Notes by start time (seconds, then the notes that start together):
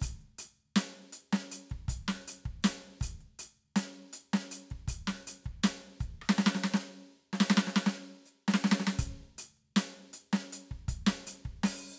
0.01 closed hi-hat, kick, hi-hat pedal
0.21 closed hi-hat
0.39 closed hi-hat
0.58 closed hi-hat
0.76 closed hi-hat, snare
1.13 closed hi-hat
1.33 snare
1.52 closed hi-hat
1.70 kick, closed hi-hat
1.88 closed hi-hat, kick
2.08 snare
2.28 closed hi-hat
2.45 kick, closed hi-hat
2.63 closed hi-hat, snare, hi-hat pedal
3.00 closed hi-hat, kick, hi-hat pedal
3.21 closed hi-hat
3.39 closed hi-hat
3.76 closed hi-hat, snare
3.94 closed hi-hat
4.13 closed hi-hat
4.33 snare
4.51 closed hi-hat
4.70 kick, closed hi-hat
4.88 closed hi-hat, kick
5.07 snare
5.27 closed hi-hat
5.45 kick, closed hi-hat
5.63 closed hi-hat, snare
6.00 kick, hi-hat pedal
6.22 cross-stick
6.29 snare
6.38 snare, hi-hat pedal
6.46 snare
6.55 snare
6.64 snare
6.74 snare
7.33 snare
7.40 snare
7.50 snare, hi-hat pedal
7.57 snare
7.67 snare
7.76 snare
7.86 snare
8.26 hi-hat pedal
8.40 closed hi-hat
8.48 snare
8.54 snare
8.64 snare
8.72 snare
8.80 snare
8.87 snare
8.99 closed hi-hat, kick
9.38 closed hi-hat
9.57 closed hi-hat
9.76 closed hi-hat, snare
10.13 closed hi-hat
10.33 snare
10.53 closed hi-hat
10.69 kick, closed hi-hat
10.88 closed hi-hat, kick
11.07 snare
11.27 closed hi-hat
11.45 kick
11.64 open hi-hat, snare